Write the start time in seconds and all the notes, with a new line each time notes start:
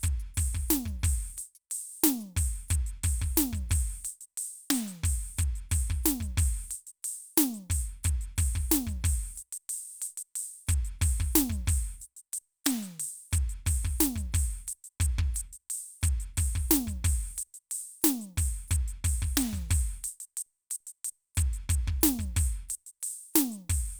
0.01 closed hi-hat, kick, hi-hat pedal
0.20 closed hi-hat
0.34 open hi-hat, kick, hi-hat pedal
0.54 kick
0.68 closed hi-hat, snare, hi-hat pedal
0.85 kick, closed hi-hat
0.99 hi-hat pedal
1.03 open hi-hat, kick
1.37 open hi-hat, hi-hat pedal
1.55 closed hi-hat
1.70 open hi-hat, hi-hat pedal
2.03 closed hi-hat, snare, hi-hat pedal
2.21 closed hi-hat
2.37 open hi-hat, kick
2.68 closed hi-hat, kick, hi-hat pedal
2.86 closed hi-hat
3.03 open hi-hat, kick
3.22 kick
3.36 closed hi-hat, snare, hi-hat pedal
3.53 closed hi-hat, kick
3.69 open hi-hat, kick, hi-hat pedal
4.04 open hi-hat, hi-hat pedal
4.21 closed hi-hat
4.37 open hi-hat
4.70 open hi-hat, snare, hi-hat pedal
4.88 closed hi-hat
5.03 open hi-hat, kick
5.37 closed hi-hat, kick, hi-hat pedal
5.55 closed hi-hat
5.69 open hi-hat, kick, hi-hat pedal
5.90 kick
6.03 closed hi-hat, snare, hi-hat pedal
6.20 closed hi-hat, kick
6.37 open hi-hat, kick
6.70 open hi-hat, hi-hat pedal
6.87 closed hi-hat
7.03 open hi-hat, hi-hat pedal
7.37 closed hi-hat, snare, hi-hat pedal
7.54 closed hi-hat
7.69 open hi-hat, kick, hi-hat pedal
8.03 closed hi-hat, kick, hi-hat pedal
8.21 closed hi-hat
8.36 open hi-hat, kick, hi-hat pedal
8.55 kick
8.70 closed hi-hat, snare, hi-hat pedal
8.87 closed hi-hat, kick
9.01 kick, hi-hat pedal
9.05 open hi-hat
9.36 closed hi-hat, hi-hat pedal
9.53 closed hi-hat
9.69 open hi-hat
10.01 open hi-hat, hi-hat pedal
10.17 closed hi-hat
10.35 open hi-hat
10.67 closed hi-hat, kick, hi-hat pedal
10.85 closed hi-hat
10.99 open hi-hat, kick, hi-hat pedal
11.20 kick
11.33 closed hi-hat, snare, hi-hat pedal
11.49 closed hi-hat, kick
11.66 open hi-hat, kick, hi-hat pedal
12.00 closed hi-hat, hi-hat pedal
12.17 closed hi-hat
12.33 closed hi-hat, hi-hat pedal
12.64 closed hi-hat, snare, hi-hat pedal
12.83 closed hi-hat
12.99 open hi-hat, hi-hat pedal
13.31 closed hi-hat, kick, hi-hat pedal
13.49 closed hi-hat
13.66 open hi-hat, kick, hi-hat pedal
13.85 kick
13.98 closed hi-hat, snare, hi-hat pedal
14.16 closed hi-hat, kick
14.32 open hi-hat, kick, hi-hat pedal
14.67 closed hi-hat, hi-hat pedal
14.84 closed hi-hat
15.00 open hi-hat, kick
15.18 kick
15.34 closed hi-hat, hi-hat pedal
15.53 closed hi-hat
15.70 open hi-hat
16.01 closed hi-hat, kick, hi-hat pedal
16.20 closed hi-hat
16.34 open hi-hat, kick, hi-hat pedal
16.55 kick
16.68 closed hi-hat, snare, hi-hat pedal
16.87 closed hi-hat, kick
17.04 open hi-hat, kick
17.36 closed hi-hat, hi-hat pedal
17.54 closed hi-hat
17.70 open hi-hat, hi-hat pedal
18.02 closed hi-hat, snare, hi-hat pedal
18.21 closed hi-hat
18.36 open hi-hat, kick, hi-hat pedal
18.68 closed hi-hat, kick, hi-hat pedal
18.88 closed hi-hat
19.04 open hi-hat, kick
19.22 kick
19.35 closed hi-hat, snare, hi-hat pedal
19.53 closed hi-hat, kick
19.69 open hi-hat, kick, hi-hat pedal
20.04 open hi-hat, hi-hat pedal
20.20 closed hi-hat
20.37 closed hi-hat
20.70 closed hi-hat, hi-hat pedal
20.87 closed hi-hat
21.04 closed hi-hat
21.35 closed hi-hat, kick, hi-hat pedal
21.53 closed hi-hat
21.69 open hi-hat, kick
21.88 kick
22.01 closed hi-hat, snare, hi-hat pedal
22.19 closed hi-hat, kick
22.35 open hi-hat, kick, hi-hat pedal
22.69 closed hi-hat, hi-hat pedal
22.86 closed hi-hat
23.00 open hi-hat, hi-hat pedal
23.34 closed hi-hat, snare, hi-hat pedal
23.52 closed hi-hat
23.69 open hi-hat, kick